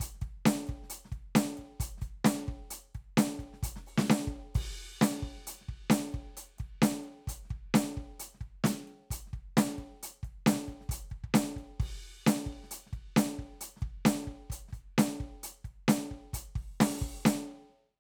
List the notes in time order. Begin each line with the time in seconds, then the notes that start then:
0.01 closed hi-hat, kick
0.15 snare
0.22 kick, closed hi-hat
0.46 closed hi-hat, snare
0.68 kick, closed hi-hat
0.84 snare
0.91 closed hi-hat
1.05 snare
1.13 kick, closed hi-hat
1.36 closed hi-hat, snare
1.58 kick, closed hi-hat
1.81 closed hi-hat, kick
1.98 closed hi-hat, snare
2.03 kick
2.25 closed hi-hat, snare
2.48 kick, closed hi-hat
2.71 closed hi-hat
2.95 kick, closed hi-hat
3.18 closed hi-hat, snare
3.40 kick, closed hi-hat
3.54 snare
3.64 open hi-hat, kick
3.77 snare
3.87 open hi-hat
3.98 snare
4.06 hi-hat pedal
4.11 snare
4.28 kick
4.55 kick, hi-hat pedal, crash
5.02 closed hi-hat, snare
5.23 kick
5.48 closed hi-hat
5.61 snare
5.69 kick, closed hi-hat
5.91 closed hi-hat, snare
6.12 closed hi-hat, kick
6.38 closed hi-hat
6.58 kick, snare, closed hi-hat
6.83 closed hi-hat, snare
7.04 closed hi-hat
7.28 closed hi-hat, kick
7.45 snare
7.50 kick, closed hi-hat
7.75 closed hi-hat, snare
7.98 kick
8.20 closed hi-hat
8.35 snare
8.42 kick, closed hi-hat
8.65 closed hi-hat, snare
8.88 closed hi-hat
9.11 closed hi-hat, kick
9.27 snare
9.34 kick, closed hi-hat
9.58 closed hi-hat, snare
9.65 snare
9.79 kick, closed hi-hat
10.04 closed hi-hat
10.24 kick, closed hi-hat
10.47 closed hi-hat, snare
10.53 snare
10.68 closed hi-hat, kick
10.81 snare
10.90 closed hi-hat, kick
11.11 kick, closed hi-hat
11.25 kick
11.35 closed hi-hat, snare
11.57 kick, closed hi-hat
11.81 kick, crash
12.00 closed hi-hat
12.27 closed hi-hat, snare
12.47 kick, closed hi-hat
12.64 snare
12.72 closed hi-hat
12.87 snare
12.94 kick, closed hi-hat
13.17 closed hi-hat, snare
13.39 kick
13.58 closed hi-hat, snare
13.77 snare
13.82 kick, closed hi-hat
14.06 closed hi-hat, snare
14.24 snare
14.28 kick
14.51 closed hi-hat, kick
14.69 snare
14.73 closed hi-hat, kick
14.99 closed hi-hat, snare
15.21 kick, closed hi-hat
15.44 closed hi-hat
15.65 kick, closed hi-hat
15.89 closed hi-hat, snare
16.12 kick
16.34 closed hi-hat, kick
16.56 open hi-hat, kick
16.81 open hi-hat, kick, snare
17.02 kick, open hi-hat
17.26 open hi-hat, snare, hi-hat pedal